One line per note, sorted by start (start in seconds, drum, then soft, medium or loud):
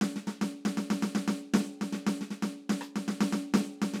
0.04 snare loud
0.16 snare medium
0.27 snare medium
0.41 snare medium
0.65 snare loud
0.77 snare medium
0.90 snare loud
1.02 snare medium
1.15 snare loud
1.28 snare loud
1.54 snare loud
1.81 snare medium
1.92 snare medium
2.06 snare loud
2.21 snare medium
2.30 snare medium
2.42 snare medium
2.69 snare loud
2.81 cross-stick medium
2.96 snare medium
3.08 snare medium
3.21 snare loud
3.32 snare medium
3.54 snare loud
3.82 snare loud
3.94 snare medium